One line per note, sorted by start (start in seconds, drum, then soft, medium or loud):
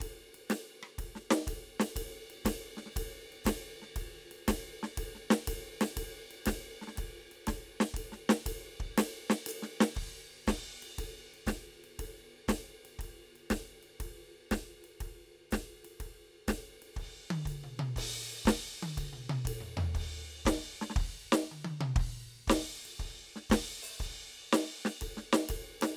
0.01 kick soft
0.01 ride medium
0.35 ride medium
0.50 snare medium
0.50 hi-hat pedal medium
0.50 ride loud
0.84 cross-stick medium
0.99 kick medium
0.99 ride medium
1.16 snare soft
1.31 snare loud
1.48 kick medium
1.48 ride loud
1.80 snare loud
1.80 ride medium
1.96 kick medium
1.96 ride loud
2.31 ride medium
2.45 kick medium
2.45 snare loud
2.45 hi-hat pedal soft
2.45 ride loud
2.78 snare soft
2.87 snare soft
2.92 hi-hat pedal soft
2.97 kick medium
2.97 snare soft
2.97 ride loud
3.33 ride soft
3.45 kick medium
3.45 snare loud
3.45 hi-hat pedal medium
3.45 ride loud
3.82 snare soft
3.97 kick medium
3.97 ride medium
4.32 ride medium
4.49 kick medium
4.49 snare loud
4.49 hi-hat pedal medium
4.49 ride loud
4.84 snare medium
4.95 kick medium
4.95 hi-hat pedal soft
4.95 ride loud
5.16 snare soft
5.31 snare loud
5.48 kick medium
5.48 hi-hat pedal soft
5.48 ride loud
5.82 snare loud
5.82 ride loud
5.97 kick medium
5.97 ride loud
6.32 ride medium
6.47 kick medium
6.47 snare medium
6.47 hi-hat pedal medium
6.47 ride loud
6.82 snare soft
6.88 snare soft
6.96 kick medium
6.96 snare soft
6.96 ride medium
7.32 ride soft
7.48 kick medium
7.48 snare medium
7.48 hi-hat pedal medium
7.48 ride loud
7.81 snare loud
7.94 kick medium
7.94 ride loud
8.13 snare soft
8.30 snare loud
8.47 kick medium
8.47 ride loud
8.81 kick medium
8.98 snare loud
8.98 ride loud
9.31 snare loud
9.47 hi-hat pedal loud
9.47 ride loud
9.63 snare medium
9.81 snare loud
9.96 kick medium
9.96 crash medium
10.47 kick medium
10.47 snare loud
10.47 hi-hat pedal soft
10.47 ride medium
10.83 ride medium
10.99 kick medium
10.99 ride medium
11.35 ride soft
11.47 kick medium
11.47 snare medium
11.47 hi-hat pedal medium
11.47 ride medium
11.85 ride soft
12.00 kick soft
12.00 ride medium
12.49 kick medium
12.49 snare loud
12.49 hi-hat pedal medium
12.49 ride loud
12.86 ride soft
12.99 kick soft
12.99 ride medium
13.36 ride soft
13.50 kick medium
13.50 snare medium
13.50 hi-hat pedal soft
13.50 ride medium
13.84 ride soft
14.01 kick medium
14.01 ride medium
14.52 kick medium
14.52 snare medium
14.52 hi-hat pedal soft
14.52 ride medium
14.85 ride soft
15.01 kick medium
15.01 ride medium
15.51 kick medium
15.51 snare medium
15.51 hi-hat pedal medium
15.51 ride medium
15.85 ride medium
16.01 kick soft
16.01 ride medium
16.48 kick medium
16.48 snare medium
16.48 hi-hat pedal medium
16.48 ride loud
16.83 ride soft
16.94 kick medium
16.94 hi-hat pedal soft
16.99 ride medium
17.31 high tom loud
17.46 kick medium
17.46 hi-hat pedal soft
17.46 ride medium
17.64 mid tom medium
17.80 mid tom loud
17.97 kick medium
17.97 ride loud
18.46 kick medium
18.46 snare loud
18.46 hi-hat pedal medium
18.46 ride medium
18.83 high tom loud
18.98 kick medium
18.98 ride medium
19.14 mid tom medium
19.30 mid tom loud
19.46 kick medium
19.46 hi-hat pedal soft
19.46 ride loud
19.61 floor tom medium
19.78 floor tom loud
19.95 kick medium
19.95 ride medium
20.46 kick medium
20.46 snare loud
20.46 ride medium
20.82 snare medium
20.91 snare soft
20.97 kick loud
20.97 crash medium
21.33 snare loud
21.52 high tom medium
21.65 high tom loud
21.81 mid tom loud
21.96 kick loud
21.96 crash medium
22.15 closed hi-hat soft
22.48 kick medium
22.48 snare loud
22.48 ride loud
22.86 ride medium
23.00 kick medium
23.00 ride medium
23.36 snare soft
23.50 kick medium
23.50 snare loud
23.50 hi-hat pedal soft
23.50 ride loud
23.83 open hi-hat medium
24.00 kick medium
24.00 hi-hat pedal medium
24.00 ride medium
24.46 hi-hat pedal soft
24.53 snare loud
24.53 ride medium
24.86 snare medium
25.02 kick medium
25.02 ride medium
25.18 snare soft
25.34 snare loud
25.50 kick medium
25.50 ride loud
25.82 snare loud
25.82 ride loud